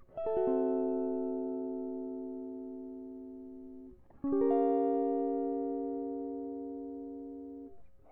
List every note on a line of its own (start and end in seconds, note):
0.19 2.74 E5
0.27 3.75 A4
0.37 3.69 F#4
0.49 3.98 C4
4.24 7.76 C#4
4.33 6.99 G4
4.42 7.62 A#4
4.52 7.25 F5